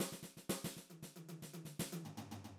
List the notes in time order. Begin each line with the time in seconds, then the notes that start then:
0.00 snare
0.12 snare
0.23 snare
0.37 snare
0.49 snare
0.64 snare
0.77 snare
0.90 high tom
1.03 snare
1.16 high tom
1.29 high tom
1.42 snare
1.54 high tom
1.65 snare
1.79 snare
1.92 high tom
2.05 floor tom
2.17 floor tom
2.31 floor tom
2.44 floor tom